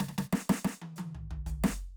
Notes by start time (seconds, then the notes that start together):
0.01 snare, hi-hat pedal
0.08 snare
0.18 snare
0.33 snare
0.49 snare, hi-hat pedal
0.65 snare
0.82 high tom
0.96 hi-hat pedal, high tom
1.15 floor tom
1.31 floor tom
1.46 floor tom, hi-hat pedal
1.64 open hi-hat, snare
1.69 snare